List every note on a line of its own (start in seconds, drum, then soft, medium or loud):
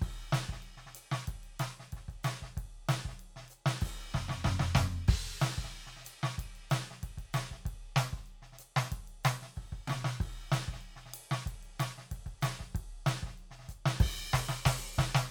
0.02 kick medium
0.02 crash medium
0.33 snare loud
0.33 hi-hat pedal medium
0.33 crash soft
0.49 kick medium
0.49 snare soft
0.63 crash soft
0.78 snare soft
0.87 snare soft
0.95 hi-hat pedal medium
0.95 crash medium
1.12 snare loud
1.28 kick medium
1.28 crash medium
1.44 crash soft
1.60 snare loud
1.60 hi-hat pedal medium
1.60 crash medium
1.80 snare soft
1.93 kick medium
1.93 snare soft
1.93 crash medium
2.09 kick soft
2.09 crash soft
2.24 snare loud
2.24 hi-hat pedal medium
2.24 crash medium
2.42 kick soft
2.42 snare soft
2.57 kick medium
2.57 crash medium
2.89 snare loud
2.89 hi-hat pedal medium
2.89 crash medium
3.05 kick medium
3.05 snare soft
3.20 crash soft
3.36 snare soft
3.41 kick soft
3.41 snare soft
3.48 hi-hat pedal medium
3.48 crash soft
3.66 snare loud
3.81 kick medium
3.81 hi-hat pedal medium
3.81 crash medium
4.14 kick medium
4.14 snare medium
4.14 mid tom medium
4.29 snare medium
4.29 mid tom medium
4.45 kick medium
4.45 snare loud
4.45 mid tom loud
4.60 snare loud
4.60 mid tom loud
4.75 kick medium
4.75 snare loud
4.75 hi-hat pedal soft
4.75 mid tom loud
5.08 kick loud
5.08 crash loud
5.41 snare loud
5.41 hi-hat pedal medium
5.41 crash medium
5.58 kick medium
5.64 snare soft
5.87 snare soft
5.97 snare soft
5.99 snare soft
6.05 hi-hat pedal medium
6.05 crash medium
6.23 snare loud
6.38 kick medium
6.38 crash medium
6.56 crash soft
6.70 snare loud
6.70 hi-hat pedal medium
6.70 crash medium
6.91 snare soft
7.03 kick medium
7.03 crash medium
7.18 kick soft
7.18 crash soft
7.34 snare loud
7.34 hi-hat pedal medium
7.34 crash medium
7.51 kick soft
7.51 snare soft
7.66 kick medium
7.66 crash medium
7.96 snare loud
7.96 hi-hat pedal medium
8.13 kick medium
8.13 snare soft
8.26 crash soft
8.42 snare soft
8.53 snare soft
8.58 kick soft
8.58 hi-hat pedal medium
8.58 crash medium
8.77 snare loud
8.84 snare medium
8.92 kick medium
8.92 crash medium
9.08 crash soft
9.24 snare loud
9.24 hi-hat pedal medium
9.24 crash loud
9.43 snare soft
9.57 kick medium
9.57 snare soft
9.57 crash soft
9.73 kick medium
9.88 snare loud
9.88 hi-hat pedal medium
9.88 high tom loud
10.05 snare loud
10.21 kick medium
10.21 crash medium
10.52 snare loud
10.52 hi-hat pedal medium
10.52 crash soft
10.68 kick medium
10.73 snare soft
10.81 crash soft
10.96 snare soft
11.06 snare soft
11.09 snare soft
11.14 hi-hat pedal medium
11.14 crash loud
11.32 snare loud
11.46 kick medium
11.46 crash medium
11.63 crash soft
11.80 snare loud
11.80 hi-hat pedal medium
11.80 crash loud
11.98 snare soft
12.12 kick medium
12.12 crash medium
12.26 kick medium
12.26 crash soft
12.42 snare loud
12.42 hi-hat pedal medium
12.42 crash loud
12.60 kick soft
12.60 snare soft
12.75 kick medium
12.75 crash medium
13.07 snare loud
13.07 hi-hat pedal medium
13.07 crash medium
13.23 kick medium
13.23 snare soft
13.38 crash soft
13.51 snare soft
13.59 snare soft
13.63 snare soft
13.69 kick soft
13.69 hi-hat pedal medium
13.69 crash soft
13.86 snare loud
14.00 kick loud
14.00 hi-hat pedal medium
14.00 crash loud
14.34 open hi-hat loud
14.34 kick medium
14.34 snare loud
14.49 snare medium
14.49 open hi-hat medium
14.66 open hi-hat loud
14.66 kick medium
14.66 snare loud
14.99 kick medium
14.99 snare loud
15.15 snare loud